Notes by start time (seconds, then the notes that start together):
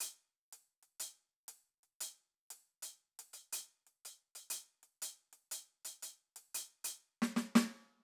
0.01 closed hi-hat
0.53 closed hi-hat
0.83 open hi-hat
1.01 closed hi-hat
1.49 closed hi-hat
1.84 open hi-hat
2.01 closed hi-hat
2.51 closed hi-hat
2.83 closed hi-hat
3.20 closed hi-hat
3.34 closed hi-hat
3.53 closed hi-hat
3.87 closed hi-hat
4.06 closed hi-hat
4.36 closed hi-hat
4.51 closed hi-hat
4.84 closed hi-hat
5.03 closed hi-hat
5.33 closed hi-hat
5.52 closed hi-hat
5.86 closed hi-hat
6.03 closed hi-hat
6.37 closed hi-hat
6.55 closed hi-hat
6.85 closed hi-hat
7.23 snare
7.37 snare
7.56 snare